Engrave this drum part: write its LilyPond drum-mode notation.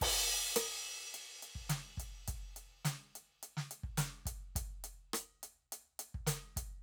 \new DrumStaff \drummode { \time 4/4 \tempo 4 = 105 <bd cymc>4 <ss hh>8 hh8 hh8 hh16 bd16 <sn hh>8 <bd hh>8 | <hh bd>8 hh8 <sn hh>8 hh8 hh16 sn16 hh16 bd16 <hh sn>8 <bd hh>8 | <bd hh>8 hh8 <ss hh>8 hh8 hh8 hh16 bd16 <sn hh>8 <bd hh>8 | }